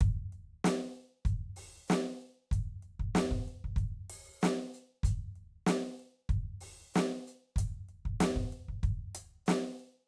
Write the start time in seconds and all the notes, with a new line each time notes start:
0.01 kick, closed hi-hat
0.32 closed hi-hat
0.64 closed hi-hat, snare
0.98 closed hi-hat
1.25 closed hi-hat, kick
1.56 open hi-hat
1.88 snare, closed hi-hat, hi-hat pedal
2.22 closed hi-hat
2.51 kick, closed hi-hat
2.83 closed hi-hat
2.99 kick
3.15 closed hi-hat, snare
3.31 kick
3.48 closed hi-hat
3.64 kick
3.76 kick, closed hi-hat
4.10 open hi-hat
4.41 closed hi-hat, snare, hi-hat pedal
4.74 closed hi-hat
5.03 closed hi-hat, kick
5.36 closed hi-hat
5.67 closed hi-hat, snare
5.99 closed hi-hat
6.29 kick, closed hi-hat
6.61 open hi-hat
6.94 snare, closed hi-hat, hi-hat pedal
7.27 closed hi-hat
7.56 kick, closed hi-hat
7.89 closed hi-hat
8.05 kick
8.20 snare, closed hi-hat
8.36 kick
8.52 closed hi-hat
8.68 kick
8.83 kick, closed hi-hat
9.15 open hi-hat
9.46 closed hi-hat, snare, hi-hat pedal
9.79 closed hi-hat